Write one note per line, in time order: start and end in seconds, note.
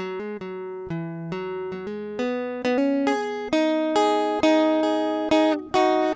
0.00 0.21 F#3
0.21 0.40 G#3
0.42 0.92 F#3
0.92 1.37 E3
1.33 1.73 F#3
1.74 1.88 F#3
1.88 2.31 G#3
2.20 2.65 B3
2.66 2.79 B3
2.79 3.23 C#4
3.08 3.52 G#4
3.54 4.43 D#4
3.97 4.43 G#4
4.44 5.32 D#4
4.44 4.79 G#4
4.85 5.30 G#4
5.33 5.59 D#4
5.33 5.53 G#4
5.53 5.60 G4
5.75 6.14 D#4
5.75 6.15 F#4